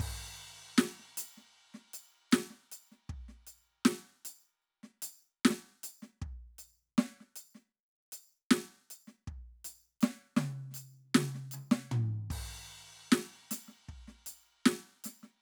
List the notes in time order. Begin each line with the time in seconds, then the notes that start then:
0.01 kick, crash
0.23 snare
0.40 percussion
0.79 snare
1.00 snare
1.18 percussion
1.38 snare
1.75 snare
1.94 percussion
2.33 snare, percussion
2.51 snare
2.73 percussion
2.92 snare
3.08 kick, percussion
3.29 snare
3.48 percussion
3.86 snare
4.26 percussion
4.63 percussion
4.84 snare
5.03 percussion
5.46 snare
5.51 snare
5.84 percussion
6.03 snare
6.23 kick
6.59 percussion
6.99 snare
7.21 snare
7.37 percussion
7.56 snare
8.13 percussion
8.52 snare
8.76 snare
8.91 percussion
9.08 snare
9.28 kick, percussion
9.66 percussion
10.02 snare, percussion
10.37 snare, mid tom
10.72 snare, percussion
10.78 percussion
11.16 snare, mid tom
11.36 snare
11.52 mid tom, percussion
11.72 snare
11.92 floor tom
12.31 kick, crash
12.70 percussion
13.13 snare
13.52 snare, percussion
13.69 snare
13.90 kick
14.09 snare
14.27 percussion
14.67 snare
15.05 snare, percussion
15.24 snare